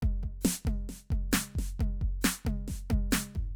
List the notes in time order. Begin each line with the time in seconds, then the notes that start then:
0.02 kick, mid tom
0.23 kick, mid tom
0.41 snare, hi-hat pedal
0.65 kick, mid tom
0.89 snare
1.10 kick, mid tom
1.31 snare, hi-hat pedal, mid tom
1.55 kick, snare
1.79 kick, mid tom
2.01 kick, mid tom
2.21 snare, hi-hat pedal
2.45 kick, mid tom
2.68 kick, snare
2.90 kick, mid tom
3.11 snare, hi-hat pedal, mid tom
3.35 kick, floor tom